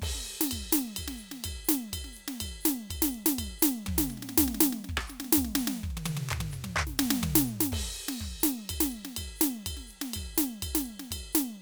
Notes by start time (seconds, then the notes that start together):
0.02 kick, crash
0.07 kick
0.13 kick, snare
0.24 hi-hat pedal
0.41 snare
0.51 kick, ride bell
0.58 kick
0.72 snare, hi-hat pedal
0.96 kick, ride bell
1.04 kick, snare
1.17 hi-hat pedal, ride
1.31 snare
1.44 kick, ride bell
1.51 kick
1.65 hi-hat pedal
1.69 snare
1.93 kick, ride bell
2.04 snare
2.13 hi-hat pedal, ride
2.28 snare
2.40 kick, ride bell
2.61 hi-hat pedal
2.65 snare
2.90 kick, ride bell
2.96 kick
3.02 snare
3.09 hi-hat pedal
3.15 ride
3.26 snare
3.38 kick, ride bell
3.45 kick
3.59 snare, hi-hat pedal
3.86 kick, high tom
3.94 kick
3.98 kick, snare
4.09 snare, hi-hat pedal
4.17 snare
4.22 snare
4.29 snare
4.38 kick, snare
4.48 snare
4.55 snare
4.60 snare, hi-hat pedal
4.73 snare
4.84 snare
4.89 kick
4.96 kick, cross-stick
5.07 snare, hi-hat pedal
5.20 snare
5.24 snare
5.33 snare
5.37 kick
5.43 kick, snare
5.55 snare, hi-hat pedal
5.67 snare
5.83 kick
5.90 kick, mid tom
5.97 mid tom
6.05 hi-hat pedal, mid tom
6.17 mid tom
6.26 percussion, hi-hat pedal
6.32 kick
6.38 kick, mid tom
6.51 floor tom, hi-hat pedal
6.64 high tom
6.76 kick, percussion
6.84 kick, snare
6.98 snare, hi-hat pedal
7.11 snare
7.22 kick, mid tom
7.29 kick
7.35 snare
7.45 hi-hat pedal
7.61 snare
7.72 kick, crash
7.93 hi-hat pedal
8.08 snare
8.20 kick, percussion, ride
8.27 kick
8.40 snare, hi-hat pedal
8.69 kick, ride bell
8.77 kick, snare
8.89 hi-hat pedal, ride
9.05 snare
9.17 kick, ride bell
9.23 kick
9.36 hi-hat pedal
9.41 snare
9.66 kick, ride bell
9.72 kick
9.77 snare
9.87 hi-hat pedal, ride
10.02 snare
10.14 kick, ride bell
10.22 kick
10.35 snare, hi-hat pedal
10.62 kick, ride bell
10.69 kick
10.75 snare
10.83 hi-hat pedal, ride
11.00 snare
11.11 kick, ride bell
11.16 kick
11.33 snare, hi-hat pedal